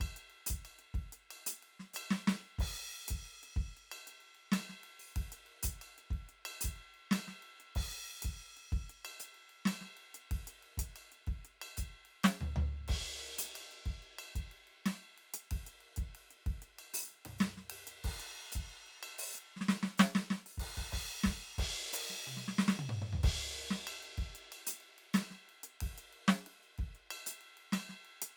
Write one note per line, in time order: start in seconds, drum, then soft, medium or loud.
0.01 kick medium
0.01 ride bell loud
0.17 closed hi-hat medium
0.31 ride soft
0.47 closed hi-hat loud
0.47 kick medium
0.66 ride bell medium
0.79 closed hi-hat soft
0.95 kick medium
0.95 ride soft
1.13 closed hi-hat medium
1.31 ride bell medium
1.47 closed hi-hat loud
1.63 ride soft
1.80 snare soft
1.94 hi-hat pedal loud
1.94 ride bell loud
2.11 snare loud
2.28 snare loud
2.45 closed hi-hat soft
2.59 kick medium
2.59 crash medium
2.76 closed hi-hat soft
2.92 ride soft
3.09 kick medium
3.09 closed hi-hat loud
3.26 ride soft
3.44 closed hi-hat soft
3.57 kick medium
3.77 closed hi-hat soft
3.92 ride bell loud
4.08 closed hi-hat medium
4.21 ride soft
4.35 ride soft
4.53 snare loud
4.53 ride bell loud
4.70 snare soft
4.84 ride medium
5.00 open hi-hat medium
5.13 hi-hat pedal soft
5.17 kick medium
5.17 ride medium
5.33 closed hi-hat medium
5.47 ride soft
5.63 closed hi-hat loud
5.63 kick medium
5.82 ride bell medium
5.99 closed hi-hat soft
6.11 kick medium
6.11 ride soft
6.30 closed hi-hat soft
6.46 ride bell loud
6.62 closed hi-hat loud
6.62 kick medium
6.76 ride soft
6.95 ride soft
7.12 snare loud
7.12 ride bell loud
7.28 snare soft
7.43 ride soft
7.61 closed hi-hat soft
7.76 kick medium
7.76 crash medium
7.92 closed hi-hat soft
8.06 ride soft
8.23 kick medium
8.23 closed hi-hat medium
8.40 ride bell soft
8.57 closed hi-hat soft
8.73 kick medium
8.73 ride soft
8.90 closed hi-hat soft
9.06 ride bell loud
9.20 closed hi-hat medium
9.35 ride soft
9.50 ride soft
9.66 snare loud
9.66 ride bell loud
9.82 snare soft
9.98 ride soft
10.15 closed hi-hat medium
10.32 kick medium
10.32 ride medium
10.48 closed hi-hat medium
10.63 ride soft
10.78 kick medium
10.78 closed hi-hat loud
10.97 ride bell medium
11.12 closed hi-hat soft
11.28 kick medium
11.28 ride soft
11.45 closed hi-hat soft
11.62 ride bell loud
11.78 closed hi-hat medium
11.78 kick soft
12.06 ride soft
12.24 snare loud
12.24 hi-hat pedal medium
12.24 ride bell medium
12.41 floor tom medium
12.57 floor tom loud
12.89 kick medium
12.89 ride loud
13.06 closed hi-hat soft
13.23 ride soft
13.39 closed hi-hat loud
13.56 ride bell loud
13.72 closed hi-hat soft
13.86 kick medium
13.86 ride soft
14.03 closed hi-hat soft
14.19 ride bell loud
14.36 kick medium
14.36 closed hi-hat medium
14.52 ride soft
14.68 ride soft
14.86 snare loud
14.86 ride bell loud
15.18 ride soft
15.34 closed hi-hat loud
15.52 kick medium
15.52 ride medium
15.67 closed hi-hat medium
15.81 ride soft
15.97 kick medium
15.97 closed hi-hat medium
16.16 ride medium
16.31 closed hi-hat soft
16.47 kick medium
16.47 ride medium
16.63 closed hi-hat soft
16.79 ride bell medium
16.94 open hi-hat loud
17.09 ride soft
17.26 cross-stick soft
17.26 high tom soft
17.26 ride medium
17.26 floor tom soft
17.39 snare loud
17.39 hi-hat pedal medium
17.58 snare soft
17.71 ride loud
17.88 closed hi-hat medium
18.05 kick medium
18.05 crash medium
18.20 closed hi-hat medium
18.36 ride bell soft
18.53 closed hi-hat medium
18.53 kick medium
18.70 ride soft
18.87 closed hi-hat soft
19.03 ride bell loud
19.19 open hi-hat loud
19.35 hi-hat pedal medium
19.35 ride medium
19.57 snare soft
19.62 snare medium
19.69 snare loud
19.83 snare medium
19.98 snare loud
19.98 hi-hat pedal medium
20.16 snare loud
20.31 snare medium
20.47 open hi-hat medium
20.58 kick soft
20.58 crash medium
20.76 kick soft
20.76 crash medium
20.92 kick soft
20.92 crash medium
21.07 open hi-hat soft
21.24 kick medium
21.24 snare loud
21.59 kick medium
21.59 ride loud
21.94 hi-hat pedal loud
21.94 crash medium
22.10 snare soft
22.28 high tom medium
22.37 snare soft
22.49 snare medium
22.59 snare loud
22.69 snare loud
22.80 high tom medium
22.90 mid tom medium
23.03 mid tom medium
23.13 floor tom medium
23.24 kick medium
23.24 ride loud
23.49 kick soft
23.71 snare medium
23.71 hi-hat pedal soft
23.88 ride bell loud
24.03 closed hi-hat soft
24.18 kick medium
24.18 ride soft
24.36 closed hi-hat medium
24.53 ride bell medium
24.67 closed hi-hat loud
24.81 ride soft
24.99 ride soft
25.14 snare loud
25.14 hi-hat pedal medium
25.14 ride bell loud
25.31 snare soft
25.50 ride soft
25.64 closed hi-hat medium
25.81 kick medium
25.81 ride loud
25.98 closed hi-hat medium
26.13 ride soft
26.29 snare loud
26.47 cross-stick soft
26.47 ride medium
26.64 closed hi-hat soft
26.79 kick medium
26.79 ride soft
26.96 closed hi-hat soft
27.11 ride bell loud
27.27 closed hi-hat loud
27.42 ride soft
27.58 ride soft
27.73 snare loud
27.73 ride bell loud
27.90 snare soft
28.06 ride soft
28.22 closed hi-hat loud